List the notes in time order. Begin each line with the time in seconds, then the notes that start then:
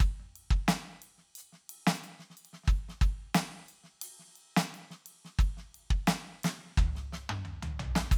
0.01 kick, ride bell
0.20 high tom
0.36 ride
0.51 kick
0.69 snare, ride bell
1.03 ride
1.18 snare
1.36 hi-hat pedal, ride bell
1.53 snare
1.70 ride
1.87 snare
1.94 hi-hat pedal
2.04 ride bell
2.20 snare
2.31 snare
2.38 ride bell
2.46 ride
2.54 snare
2.64 snare
2.68 kick, ride
2.75 hi-hat pedal
2.89 snare
3.02 kick, ride
3.35 snare, hi-hat pedal, ride
3.64 hi-hat pedal
3.69 ride bell
3.84 snare
4.02 hi-hat pedal, ride
4.20 snare
4.28 snare
4.36 ride
4.57 snare, hi-hat pedal
4.75 ride
4.91 snare
5.07 ride
5.25 snare
5.39 kick, ride
5.58 snare
5.75 ride
5.91 kick
6.08 snare, ride
6.44 snare, ride
6.78 kick, mid tom
6.96 snare
7.13 snare
7.30 high tom
7.46 mid tom
7.63 mid tom
7.80 floor tom
7.96 snare
8.12 kick, ride bell